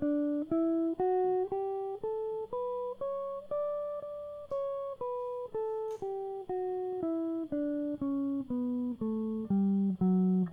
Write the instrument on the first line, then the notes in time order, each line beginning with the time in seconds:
electric guitar
0.03 D4
0.52 E4
1.00 F#4
1.52 G4
2.04 A4
2.53 B4
3.02 C#5
3.52 D5
4.02 D5
4.52 C#5
5.01 B4
5.55 A4
6.03 G4
6.50 F#4
7.03 E4
7.53 D4
8.02 C#4
8.51 B3
9.02 A3
9.51 G3
10.02 F#3